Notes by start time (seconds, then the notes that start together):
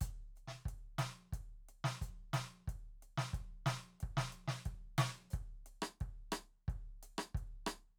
0.01 open hi-hat, kick
0.36 closed hi-hat, hi-hat pedal
0.48 snare
0.66 kick, closed hi-hat
0.99 snare, closed hi-hat
1.33 kick, closed hi-hat
1.69 closed hi-hat
1.84 snare
2.02 closed hi-hat, kick
2.33 snare, closed hi-hat
2.68 kick, closed hi-hat
3.03 closed hi-hat
3.18 snare
3.34 kick, closed hi-hat
3.66 snare, closed hi-hat
4.01 kick, closed hi-hat
4.17 snare
4.32 closed hi-hat
4.48 snare
4.66 kick, closed hi-hat
4.98 snare, open hi-hat
5.31 kick, closed hi-hat, hi-hat pedal
5.66 closed hi-hat
5.82 cross-stick
6.01 kick, closed hi-hat
6.32 cross-stick, closed hi-hat
6.68 kick, closed hi-hat
7.03 closed hi-hat
7.18 cross-stick
7.35 kick, closed hi-hat
7.67 cross-stick, closed hi-hat